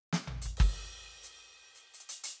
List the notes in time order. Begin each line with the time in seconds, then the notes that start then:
0.13 snare
0.28 floor tom
0.42 closed hi-hat, kick
0.57 kick, crash
1.23 hi-hat pedal
1.75 hi-hat pedal
1.94 closed hi-hat
2.00 closed hi-hat
2.09 closed hi-hat
2.24 closed hi-hat